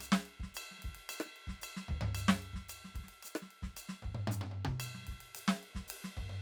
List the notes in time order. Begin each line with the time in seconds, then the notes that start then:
0.01 hi-hat pedal, ride bell
0.12 snare
0.26 ride
0.40 kick, snare
0.55 hi-hat pedal, ride bell
0.71 snare
0.79 snare, ride
0.84 kick
0.92 snare, ride
0.95 snare
1.09 hi-hat pedal, ride bell
1.20 cross-stick
1.26 cross-stick
1.36 ride
1.47 kick, snare
1.62 hi-hat pedal, ride bell
1.77 snare
1.89 kick, floor tom
2.01 floor tom
2.15 hi-hat pedal, ride bell
2.29 snare
2.43 ride
2.54 kick, snare
2.69 hi-hat pedal, ride bell
2.85 snare
2.95 kick, snare, ride
3.04 snare
3.09 ride
3.23 hi-hat pedal, ride bell
3.35 cross-stick
3.42 snare
3.51 ride
3.63 kick, snare
3.77 hi-hat pedal, ride bell
3.89 snare
4.03 kick, mid tom
4.10 kick
4.15 mid tom
4.28 hi-hat pedal, mid tom
4.42 mid tom
4.52 mid tom
4.65 kick, high tom
4.80 hi-hat pedal, ride bell
4.95 snare
5.04 snare, ride
5.08 kick, snare
5.17 snare, ride
5.35 hi-hat pedal, ride
5.48 snare
5.63 ride
5.75 kick, snare
5.88 hi-hat pedal, ride
6.04 snare
6.17 kick, mid tom
6.23 kick
6.30 mid tom